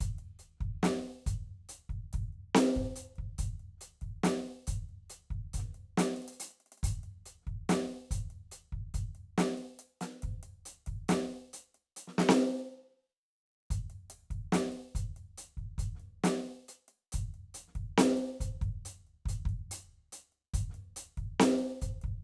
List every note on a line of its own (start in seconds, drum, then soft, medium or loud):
0.01 closed hi-hat medium
0.01 kick medium
0.18 closed hi-hat soft
0.39 closed hi-hat medium
0.57 kick medium
0.57 snare soft
0.62 closed hi-hat soft
0.83 closed hi-hat medium
0.83 snare loud
1.26 closed hi-hat medium
1.26 kick medium
1.47 closed hi-hat soft
1.69 closed hi-hat medium
1.89 kick soft
1.89 closed hi-hat soft
2.13 kick medium
2.13 closed hi-hat medium
2.32 closed hi-hat soft
2.55 closed hi-hat loud
2.55 snare loud
2.75 kick medium
2.75 closed hi-hat soft
2.96 closed hi-hat medium
3.16 kick soft
3.16 closed hi-hat soft
3.38 closed hi-hat medium
3.38 kick medium
3.59 closed hi-hat soft
3.77 closed hi-hat medium
3.77 snare soft
4.01 kick soft
4.01 closed hi-hat soft
4.23 closed hi-hat loud
4.23 snare loud
4.67 closed hi-hat loud
4.67 kick medium
4.89 closed hi-hat soft
5.10 closed hi-hat medium
5.30 kick medium
5.30 closed hi-hat soft
5.53 closed hi-hat medium
5.53 kick medium
5.57 snare soft
5.65 kick soft
5.74 closed hi-hat soft
5.97 closed hi-hat loud
5.97 snare loud
6.16 closed hi-hat soft
6.22 closed hi-hat soft
6.28 closed hi-hat medium
6.32 closed hi-hat soft
6.40 closed hi-hat loud
6.51 closed hi-hat soft
6.60 closed hi-hat soft
6.66 closed hi-hat soft
6.72 closed hi-hat soft
6.77 closed hi-hat soft
6.83 closed hi-hat loud
6.83 kick medium
7.03 closed hi-hat soft
7.26 closed hi-hat medium
7.42 snare soft
7.47 kick soft
7.47 closed hi-hat soft
7.69 closed hi-hat loud
7.69 snare loud
7.88 closed hi-hat soft
8.11 closed hi-hat loud
8.11 kick medium
8.30 closed hi-hat soft
8.52 closed hi-hat medium
8.72 kick soft
8.94 closed hi-hat medium
8.94 kick medium
9.15 closed hi-hat soft
9.37 closed hi-hat medium
9.37 snare loud
9.57 closed hi-hat soft
9.79 closed hi-hat medium
10.01 closed hi-hat medium
10.01 snare medium
10.22 kick medium
10.22 closed hi-hat soft
10.43 closed hi-hat soft
10.65 closed hi-hat medium
10.86 kick soft
10.86 closed hi-hat soft
11.08 closed hi-hat loud
11.08 snare loud
11.30 closed hi-hat soft
11.53 closed hi-hat loud
11.74 closed hi-hat soft
11.96 closed hi-hat medium
12.07 snare soft
12.18 snare loud
12.29 snare loud
13.70 closed hi-hat medium
13.70 kick medium
13.90 closed hi-hat soft
14.10 closed hi-hat medium
14.30 kick soft
14.30 closed hi-hat soft
14.52 closed hi-hat medium
14.52 snare loud
14.72 closed hi-hat soft
14.95 closed hi-hat medium
14.95 kick medium
15.16 closed hi-hat soft
15.38 closed hi-hat medium
15.57 kick soft
15.57 closed hi-hat soft
15.78 closed hi-hat medium
15.78 kick medium
15.95 snare soft
16.00 closed hi-hat soft
16.24 closed hi-hat loud
16.24 snare loud
16.45 closed hi-hat soft
16.68 closed hi-hat medium
16.88 closed hi-hat soft
17.12 closed hi-hat loud
17.12 kick medium
17.34 closed hi-hat soft
17.54 closed hi-hat loud
17.68 snare soft
17.75 kick soft
17.75 closed hi-hat soft
17.98 closed hi-hat loud
17.98 snare loud
18.17 snare soft
18.17 closed hi-hat soft
18.40 closed hi-hat medium
18.40 kick medium
18.61 kick medium
18.61 closed hi-hat soft
18.85 closed hi-hat loud
19.07 closed hi-hat soft
19.26 closed hi-hat medium
19.26 kick medium
19.45 kick medium
19.45 closed hi-hat soft
19.71 closed hi-hat loud
19.91 closed hi-hat soft
20.12 closed hi-hat medium
20.32 closed hi-hat soft
20.54 closed hi-hat loud
20.54 kick medium
20.70 snare soft
20.74 closed hi-hat soft
20.96 closed hi-hat loud
21.17 kick medium
21.17 closed hi-hat soft
21.40 closed hi-hat loud
21.40 snare loud
21.59 closed hi-hat soft
21.82 closed hi-hat medium
21.82 kick medium
22.02 kick medium
22.02 closed hi-hat soft